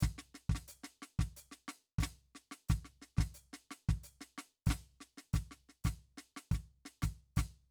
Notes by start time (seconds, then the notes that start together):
0.01 kick, snare, hi-hat pedal
0.19 snare
0.35 snare
0.50 kick, snare
0.55 snare
0.68 hi-hat pedal
0.84 snare
1.03 snare
1.20 kick, snare
1.37 hi-hat pedal
1.52 snare
1.69 snare
1.99 kick, snare, hi-hat pedal
2.03 snare
2.36 snare
2.52 snare
2.69 kick, snare, hi-hat pedal
2.85 snare
3.02 snare
3.17 kick, snare
3.20 snare
3.35 hi-hat pedal
3.54 snare
3.71 snare
3.89 kick, snare
4.04 hi-hat pedal
4.21 snare
4.38 snare
4.67 kick, snare, hi-hat pedal
4.71 snare
5.01 snare
5.18 snare
5.34 kick, snare, hi-hat pedal
5.52 snare
5.69 snare
5.85 kick, snare, hi-hat pedal
6.18 snare
6.37 snare
6.52 kick, snare, hi-hat pedal
6.86 snare
7.03 kick, snare, hi-hat pedal
7.37 kick, snare, hi-hat pedal